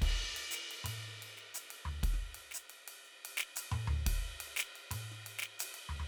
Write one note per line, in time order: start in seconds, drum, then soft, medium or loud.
0.02 kick medium
0.02 ride medium
0.24 snare soft
0.36 ride medium
0.51 snare soft
0.51 hi-hat pedal medium
0.71 ride medium
0.84 mid tom medium
0.84 ride medium
1.08 snare soft
1.13 snare soft
1.22 ride medium
1.38 snare soft
1.54 hi-hat pedal medium
1.54 ride medium
1.71 ride medium
1.85 floor tom medium
2.03 kick medium
2.03 ride medium
2.14 snare soft
2.35 ride medium
2.51 snare soft
2.51 hi-hat pedal medium
2.70 ride soft
2.88 ride medium
3.04 hi-hat pedal soft
3.25 ride medium
3.37 snare medium
3.40 snare medium
3.56 hi-hat pedal medium
3.56 ride medium
3.72 mid tom medium
3.88 floor tom medium
4.06 kick medium
4.06 ride loud
4.40 ride medium
4.56 snare medium
4.56 hi-hat pedal medium
4.59 snare medium
4.76 ride soft
4.91 mid tom medium
4.91 ride medium
5.12 snare soft
5.26 ride medium
5.39 snare soft
5.42 snare soft
5.60 hi-hat pedal medium
5.60 ride loud
5.74 ride medium
5.89 floor tom medium
6.00 floor tom medium